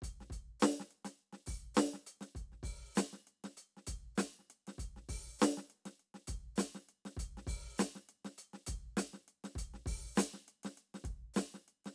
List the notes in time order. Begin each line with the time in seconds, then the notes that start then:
0.02 closed hi-hat, kick
0.20 snare
0.30 open hi-hat, kick
0.60 closed hi-hat, snare, hi-hat pedal
0.80 snare
0.91 closed hi-hat
1.04 closed hi-hat, snare
1.19 closed hi-hat
1.32 snare
1.46 open hi-hat, kick
1.74 closed hi-hat, snare, hi-hat pedal
1.93 snare
2.06 closed hi-hat
2.21 snare, closed hi-hat
2.35 closed hi-hat, kick
2.52 snare
2.63 open hi-hat, kick
2.95 closed hi-hat, snare, hi-hat pedal
3.13 snare
3.27 closed hi-hat
3.44 snare, closed hi-hat
3.57 closed hi-hat
3.77 snare
3.87 open hi-hat, kick
4.15 closed hi-hat, snare, hi-hat pedal
4.39 snare
4.50 closed hi-hat
4.67 snare, closed hi-hat
4.78 closed hi-hat, kick
4.96 snare
5.09 open hi-hat, kick
5.39 closed hi-hat, snare, hi-hat pedal
5.57 snare
5.70 closed hi-hat
5.85 snare, closed hi-hat
5.99 closed hi-hat
6.14 snare
6.27 closed hi-hat, kick
6.56 closed hi-hat, snare, hi-hat pedal
6.75 snare
6.88 closed hi-hat
7.05 snare, closed hi-hat
7.17 closed hi-hat, kick
7.37 snare
7.47 open hi-hat, kick
7.78 closed hi-hat, snare, hi-hat pedal
7.95 snare
8.09 closed hi-hat
8.25 snare, closed hi-hat
8.38 closed hi-hat
8.53 snare
8.66 closed hi-hat, kick
8.97 closed hi-hat, snare
9.13 snare
9.28 closed hi-hat
9.44 snare, closed hi-hat
9.55 closed hi-hat, kick
9.74 snare
9.86 open hi-hat, kick
10.15 closed hi-hat, snare, hi-hat pedal
10.33 snare
10.48 closed hi-hat
10.63 snare, closed hi-hat
10.77 closed hi-hat
10.94 snare
11.04 kick, closed hi-hat
11.34 closed hi-hat, snare, hi-hat pedal
11.54 snare
11.68 closed hi-hat
11.84 snare, closed hi-hat